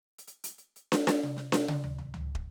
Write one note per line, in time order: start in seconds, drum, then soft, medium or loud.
0.18 closed hi-hat medium
0.27 closed hi-hat medium
0.44 closed hi-hat loud
0.58 closed hi-hat soft
0.76 closed hi-hat soft
0.92 snare loud
1.07 snare loud
1.23 high tom loud
1.36 snare medium
1.52 snare loud
1.68 high tom loud
1.84 floor tom medium
1.98 floor tom medium
2.14 floor tom medium
2.35 kick medium